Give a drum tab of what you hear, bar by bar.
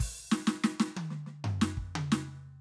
HH |o---------------|
SD |--oooo-og-o--o--|
T1 |------o-----o---|
FT |---------o------|
BD |o----------o----|